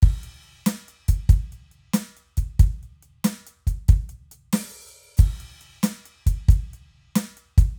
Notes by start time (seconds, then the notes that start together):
0.01 kick, crash
0.24 closed hi-hat
0.43 closed hi-hat
0.66 snare, closed hi-hat
0.88 closed hi-hat
1.08 kick, closed hi-hat
1.29 kick, closed hi-hat
1.52 closed hi-hat
1.72 closed hi-hat
1.94 snare, closed hi-hat
2.17 closed hi-hat
2.37 kick, closed hi-hat
2.60 kick, closed hi-hat
2.83 closed hi-hat
3.03 closed hi-hat
3.24 snare, closed hi-hat
3.47 closed hi-hat
3.67 kick, closed hi-hat
3.89 kick, closed hi-hat
4.09 closed hi-hat
4.32 closed hi-hat
4.53 snare, open hi-hat
5.17 kick, hi-hat pedal, crash
5.40 closed hi-hat
5.61 closed hi-hat
5.83 snare, closed hi-hat
6.06 closed hi-hat
6.27 kick, closed hi-hat
6.49 kick, closed hi-hat
6.74 closed hi-hat
7.16 snare, closed hi-hat
7.37 closed hi-hat
7.58 kick, closed hi-hat